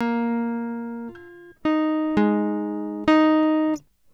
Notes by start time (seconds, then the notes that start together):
0.01 A#3
1.11 F4
1.66 D#4
2.18 G#3
3.09 D#4